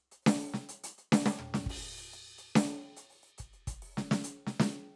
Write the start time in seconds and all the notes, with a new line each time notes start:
0.12 closed hi-hat
0.23 hi-hat pedal
0.27 snare
0.41 open hi-hat
0.54 snare
0.70 open hi-hat
0.84 closed hi-hat
0.99 closed hi-hat
1.13 snare
1.26 snare, hi-hat pedal
1.40 mid tom
1.55 snare
1.62 hi-hat pedal
1.67 kick, crash
1.73 kick
1.87 closed hi-hat
1.98 closed hi-hat
2.14 closed hi-hat
2.27 closed hi-hat
2.39 closed hi-hat
2.56 snare
2.71 open hi-hat
2.82 closed hi-hat
2.97 open hi-hat
3.10 open hi-hat
3.24 open hi-hat
3.39 closed hi-hat, kick
3.54 closed hi-hat
3.68 open hi-hat, kick
3.83 open hi-hat
3.98 snare
4.12 snare
4.25 closed hi-hat
4.47 snare
4.60 snare
4.70 hi-hat pedal